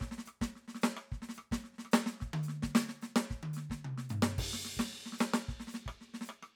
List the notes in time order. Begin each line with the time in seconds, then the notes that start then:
0.01 kick, snare
0.07 kick
0.11 snare
0.18 snare
0.26 cross-stick, hi-hat pedal
0.41 kick, snare
0.55 snare
0.62 snare
0.68 snare
0.75 snare
0.81 snare, hi-hat pedal
0.97 cross-stick
1.12 kick, snare
1.22 snare
1.29 snare
1.34 cross-stick, hi-hat pedal
1.51 kick, snare
1.57 kick
1.64 snare
1.73 snare
1.78 snare
1.85 cross-stick
1.91 snare, hi-hat pedal
2.06 snare
2.20 kick, snare
2.27 kick
2.33 high tom
2.43 hi-hat pedal
2.48 snare
2.62 kick, snare
2.75 snare
2.88 snare
3.01 snare, hi-hat pedal
3.16 snare
3.30 kick, snare
3.36 kick
3.43 high tom
3.53 snare, hi-hat pedal
3.70 kick, snare
3.84 mid tom
3.98 snare
4.09 floor tom, hi-hat pedal
4.22 snare
4.38 kick, ride
4.53 snare
4.61 snare, hi-hat pedal
4.77 kick, snare
4.93 snare
4.99 snare
5.06 snare
5.12 snare
5.18 snare, hi-hat pedal
5.34 snare
5.48 kick, snare
5.55 kick
5.60 snare
5.67 snare, hi-hat pedal
5.74 snare
5.86 kick, cross-stick
5.91 kick
6.01 snare
6.07 snare
6.12 snare
6.21 snare
6.25 cross-stick, hi-hat pedal
6.43 cross-stick